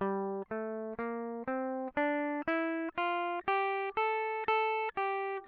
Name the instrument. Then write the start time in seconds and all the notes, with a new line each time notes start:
electric guitar
0.02 G3
0.52 A3
1.00 A#3
1.48 C4
1.98 D4
2.48 E4
2.98 F4
3.48 G4
3.98 A4
4.49 A4
4.98 G4